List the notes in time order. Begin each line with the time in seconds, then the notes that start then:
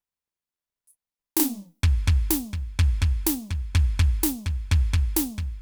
0.87 hi-hat pedal
1.37 snare
1.40 snare
1.83 kick
2.07 kick
2.30 snare
2.46 snare
2.53 kick
2.79 kick
3.02 kick
3.26 snare
3.34 snare
3.43 snare
3.50 kick
3.75 kick
3.99 kick
4.23 snare
4.39 snare
4.46 kick
4.71 kick
4.93 kick
5.16 snare
5.38 kick